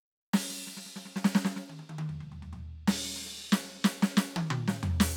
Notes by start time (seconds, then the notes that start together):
0.33 snare, crash
0.50 snare
0.54 hi-hat pedal
0.67 snare
0.77 snare
0.86 snare
0.96 snare
1.05 snare
1.16 snare
1.24 snare
1.35 snare
1.45 snare
1.56 snare
1.69 high tom
1.79 high tom
1.89 high tom
1.98 high tom
2.09 floor tom
2.21 floor tom
2.32 floor tom
2.42 floor tom
2.53 floor tom
2.87 snare, ride
3.05 snare
3.16 snare
3.21 snare
3.25 snare
3.38 snare
3.41 snare
3.43 snare
3.47 snare
3.52 snare
3.65 snare
3.70 snare
3.74 snare
3.78 snare
3.81 snare
3.84 snare
4.02 snare
4.17 snare
4.36 high tom
4.50 mid tom
4.68 snare
4.83 floor tom
5.00 open hi-hat, snare